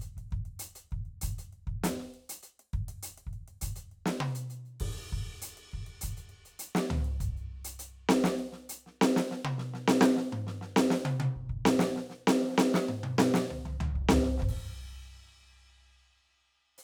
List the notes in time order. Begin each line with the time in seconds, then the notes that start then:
0.01 closed hi-hat
0.17 kick, closed hi-hat
0.31 kick, closed hi-hat
0.45 closed hi-hat
0.59 closed hi-hat
0.75 closed hi-hat
0.91 kick, closed hi-hat
1.05 closed hi-hat
1.21 closed hi-hat, kick
1.38 closed hi-hat
1.53 closed hi-hat
1.67 kick
1.83 closed hi-hat, snare
1.98 snare
2.14 closed hi-hat
2.29 closed hi-hat
2.43 closed hi-hat
2.59 closed hi-hat
2.73 kick, closed hi-hat
2.88 closed hi-hat
3.03 closed hi-hat
3.18 closed hi-hat
3.27 kick
3.33 closed hi-hat
3.48 closed hi-hat
3.61 closed hi-hat, kick
3.76 closed hi-hat
3.91 closed hi-hat
4.06 snare
4.20 high tom
4.35 closed hi-hat
4.50 closed hi-hat
4.65 closed hi-hat
4.80 kick, crash
4.95 closed hi-hat
5.12 kick
5.26 closed hi-hat
5.42 closed hi-hat
5.57 closed hi-hat
5.72 kick, closed hi-hat
5.86 closed hi-hat
6.01 closed hi-hat, kick
6.17 closed hi-hat
6.29 closed hi-hat
6.45 closed hi-hat
6.59 closed hi-hat
6.75 snare
6.90 floor tom
7.04 closed hi-hat
7.20 closed hi-hat, kick
7.37 closed hi-hat
7.65 closed hi-hat
7.79 closed hi-hat
8.09 snare
8.24 snare
8.39 closed hi-hat
8.52 snare
8.69 closed hi-hat
8.86 snare
9.01 snare
9.16 snare
9.31 snare
9.45 high tom
9.58 snare
9.74 snare
9.88 snare
10.01 snare
10.17 snare
10.32 mid tom
10.47 snare
10.61 snare
10.76 snare
10.90 snare
11.05 high tom
11.20 high tom
11.36 kick
11.49 kick
11.65 snare
11.79 snare
11.96 snare
12.10 snare
12.27 snare
12.43 snare
12.49 snare
12.58 snare
12.74 snare
12.88 mid tom
13.03 high tom
13.18 snare
13.34 snare
13.50 floor tom
13.65 floor tom
13.80 floor tom
13.95 kick
14.09 snare, floor tom
14.23 snare
14.38 snare, high tom
14.42 kick
14.49 crash
16.78 hi-hat pedal